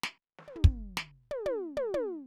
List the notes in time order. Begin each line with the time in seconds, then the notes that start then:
0.04 snare
0.39 snare
0.48 high tom
0.55 floor tom
0.64 kick
0.97 snare
1.31 high tom
1.46 high tom
1.77 high tom
1.94 high tom